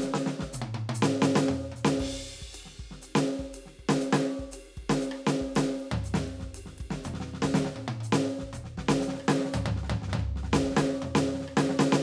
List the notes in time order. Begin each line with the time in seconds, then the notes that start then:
0.01 snare, hi-hat pedal
0.14 snare
0.26 snare
0.39 kick, snare
0.50 kick, hi-hat pedal
0.54 high tom
0.62 high tom
0.74 high tom
0.89 high tom
0.94 hi-hat pedal
1.02 snare
1.22 snare
1.35 snare
1.48 mid tom
1.72 mid tom
1.76 hi-hat pedal
1.85 snare
2.00 kick, ride
2.06 kick
2.11 kick
2.19 cross-stick, hi-hat pedal
2.34 snare
2.38 kick, snare
2.52 hi-hat pedal, ride bell
2.65 snare
2.77 kick, ride
2.84 kick
2.91 snare
3.02 hi-hat pedal, ride
3.15 snare
3.28 ride
3.38 kick, snare
3.53 hi-hat pedal, ride
3.66 snare
3.79 kick, ride
3.89 snare
4.00 hi-hat pedal, ride
4.12 snare
4.26 ride
4.39 kick
4.51 hi-hat pedal, ride
4.77 kick, ride
4.83 kick
4.89 snare
5.01 hi-hat pedal, ride
5.11 cross-stick
5.22 hi-hat pedal, ride
5.27 snare
5.41 kick
5.55 snare, hi-hat pedal, ride
5.80 ride
5.91 floor tom
6.04 hi-hat pedal, ride
6.14 snare
6.26 hi-hat pedal, ride
6.40 kick, snare
6.54 hi-hat pedal, ride
6.66 snare
6.78 kick, ride
6.86 kick
6.90 snare
7.04 hi-hat pedal, mid tom
7.14 snare
7.20 snare
7.26 snare
7.33 snare
7.42 kick, snare
7.54 snare, hi-hat pedal
7.65 snare
7.76 high tom
7.88 high tom
8.00 hi-hat pedal, high tom
8.12 snare
8.24 hi-hat pedal, high tom
8.38 kick, snare
8.53 hi-hat pedal, mid tom
8.64 snare
8.77 kick, snare
8.88 snare
9.00 snare, hi-hat pedal
9.08 snare
9.13 snare
9.20 cross-stick, hi-hat pedal
9.28 snare
9.38 snare
9.45 snare
9.53 hi-hat pedal, floor tom
9.66 floor tom
9.76 snare
9.83 snare
9.90 floor tom
10.02 snare
10.08 snare
10.13 floor tom
10.19 floor tom
10.36 snare
10.43 snare
10.52 kick, snare
10.58 kick
10.65 snare
10.71 snare
10.77 kick, snare
10.88 snare
10.92 snare
11.02 mid tom
11.15 snare
11.27 snare
11.34 snare
11.39 snare
11.41 snare
11.48 cross-stick
11.52 cross-stick
11.57 snare
11.69 snare
11.79 snare
11.92 snare